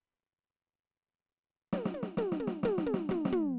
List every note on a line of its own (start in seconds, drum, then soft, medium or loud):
1.73 snare medium
1.73 high tom medium
1.85 snare medium
1.94 high tom medium
2.03 snare medium
2.17 snare medium
2.17 mid tom loud
2.32 snare medium
2.39 mid tom medium
2.47 snare medium
2.63 snare medium
2.63 mid tom loud
2.78 snare medium
2.86 mid tom loud
2.94 snare medium
3.09 snare medium
3.09 floor tom loud
3.25 snare medium
3.32 floor tom loud